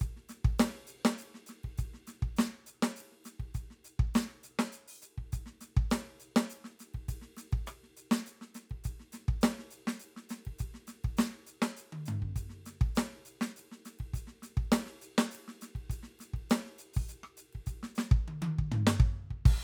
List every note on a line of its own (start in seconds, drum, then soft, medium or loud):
0.01 kick medium
0.01 hi-hat pedal medium
0.01 ride soft
0.17 snare soft
0.30 snare soft
0.30 hi-hat pedal medium
0.30 ride soft
0.45 kick loud
0.45 ride soft
0.59 snare loud
0.59 hi-hat pedal medium
0.59 ride medium
0.71 snare soft
0.75 snare soft
0.88 hi-hat pedal medium
0.88 ride soft
1.06 snare loud
1.19 hi-hat pedal medium
1.23 ride soft
1.35 snare soft
1.47 snare soft
1.47 hi-hat pedal medium
1.47 ride soft
1.64 kick soft
1.64 ride soft
1.78 kick medium
1.78 hi-hat pedal medium
1.78 ride soft
1.94 snare soft
2.08 snare soft
2.08 hi-hat pedal medium
2.08 ride soft
2.23 kick medium
2.23 ride soft
2.37 snare loud
2.37 hi-hat pedal medium
2.51 snare soft
2.67 hi-hat pedal medium
2.67 ride soft
2.83 snare loud
2.97 hi-hat pedal medium
3.01 ride medium
3.12 snare soft
3.25 snare soft
3.25 hi-hat pedal medium
3.25 ride soft
3.40 kick soft
3.40 ride soft
3.55 kick medium
3.55 hi-hat pedal medium
3.55 ride soft
3.71 snare soft
3.85 hi-hat pedal medium
3.85 ride soft
4.00 kick medium
4.00 ride soft
4.15 snare loud
4.15 hi-hat pedal medium
4.15 ride soft
4.29 snare soft
4.44 hi-hat pedal medium
4.60 snare loud
4.73 hi-hat pedal medium
4.88 open hi-hat medium
5.03 hi-hat pedal medium
5.03 ride soft
5.18 kick soft
5.33 kick medium
5.33 hi-hat pedal medium
5.33 ride soft
5.47 snare soft
5.61 snare soft
5.61 hi-hat pedal medium
5.61 ride soft
5.77 kick loud
5.77 ride soft
5.91 snare loud
5.91 hi-hat pedal medium
5.91 ride medium
6.02 cross-stick soft
6.07 cross-stick soft
6.20 hi-hat pedal medium
6.37 snare loud
6.50 hi-hat pedal medium
6.50 ride soft
6.65 snare soft
6.80 snare soft
6.80 hi-hat pedal medium
6.80 ride soft
6.95 kick soft
6.95 ride soft
7.09 kick medium
7.09 hi-hat pedal medium
7.09 ride medium
7.22 snare soft
7.37 snare soft
7.37 hi-hat pedal medium
7.37 ride soft
7.53 kick medium
7.53 ride soft
7.67 cross-stick medium
7.67 hi-hat pedal medium
7.67 ride soft
7.84 snare soft
7.97 hi-hat pedal medium
7.97 ride soft
8.12 snare loud
8.27 hi-hat pedal medium
8.27 ride soft
8.42 snare soft
8.55 snare soft
8.55 hi-hat pedal medium
8.55 ride soft
8.71 kick soft
8.71 ride soft
8.85 kick medium
8.85 hi-hat pedal medium
8.85 ride soft
9.00 snare soft
9.13 snare soft
9.13 hi-hat pedal medium
9.13 ride soft
9.29 kick medium
9.29 ride soft
9.42 snare loud
9.42 hi-hat pedal medium
9.42 ride medium
9.59 snare soft
9.71 hi-hat pedal medium
9.71 ride soft
9.88 snare medium
10.00 hi-hat pedal medium
10.05 ride soft
10.17 snare soft
10.30 snare medium
10.30 hi-hat pedal medium
10.30 ride soft
10.46 kick soft
10.46 ride soft
10.59 kick medium
10.59 hi-hat pedal medium
10.59 ride soft
10.75 snare soft
10.88 snare soft
10.88 hi-hat pedal medium
10.88 ride soft
11.05 kick medium
11.05 ride soft
11.18 snare loud
11.18 hi-hat pedal medium
11.18 ride medium
11.32 snare soft
11.47 hi-hat pedal medium
11.47 ride soft
11.63 snare loud
11.77 hi-hat pedal medium
11.77 ride soft
11.93 high tom medium
12.06 floor tom loud
12.06 hi-hat pedal medium
12.23 kick soft
12.37 kick medium
12.37 hi-hat pedal medium
12.37 ride soft
12.50 snare soft
12.66 snare soft
12.66 hi-hat pedal medium
12.66 ride soft
12.82 kick medium
12.82 ride soft
12.96 snare loud
12.96 hi-hat pedal medium
12.96 ride medium
13.13 snare soft
13.26 hi-hat pedal medium
13.26 ride soft
13.42 snare medium
13.42 ride soft
13.57 hi-hat pedal medium
13.57 ride soft
13.72 snare soft
13.86 snare soft
13.86 hi-hat pedal medium
13.86 ride soft
14.00 kick soft
14.00 ride soft
14.14 kick medium
14.14 hi-hat pedal medium
14.14 ride soft
14.28 snare soft
14.43 snare soft
14.43 hi-hat pedal medium
14.43 ride soft
14.58 kick medium
14.58 ride soft
14.73 snare loud
14.73 hi-hat pedal medium
14.73 ride medium
14.87 snare soft
15.02 hi-hat pedal medium
15.02 ride soft
15.19 snare loud
15.32 hi-hat pedal medium
15.36 ride medium
15.49 snare soft
15.62 snare soft
15.62 hi-hat pedal medium
15.62 ride soft
15.76 kick soft
15.76 ride soft
15.90 kick medium
15.90 hi-hat pedal medium
15.90 ride medium
16.04 snare soft
16.20 snare soft
16.20 hi-hat pedal medium
16.20 ride soft
16.34 kick medium
16.34 ride soft
16.50 snare loud
16.50 hi-hat pedal medium
16.50 ride medium
16.66 snare soft
16.79 hi-hat pedal medium
16.94 open hi-hat medium
16.94 kick medium
17.09 hi-hat pedal medium
17.09 ride soft
17.24 cross-stick medium
17.38 snare soft
17.38 hi-hat pedal medium
17.38 ride soft
17.54 kick soft
17.54 ride soft
17.67 kick medium
17.67 hi-hat pedal medium
17.67 ride soft
17.84 snare medium
17.96 snare loud
17.96 hi-hat pedal medium
18.12 kick loud
18.29 high tom medium
18.43 high tom loud
18.59 kick medium
18.72 floor tom loud
18.87 snare loud
19.00 kick loud
19.31 kick soft
19.46 kick loud
19.46 crash medium